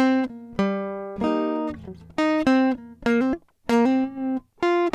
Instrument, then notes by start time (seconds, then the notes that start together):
acoustic guitar
0.00 C4
0.26 A#3
0.60 G3
1.18 G3
1.23 A#3 D#4 G4
2.19 D#4
2.48 C4
2.73 A#3
3.07 A#3
3.23 C4
3.71 A#3
3.87 C4
4.64 F4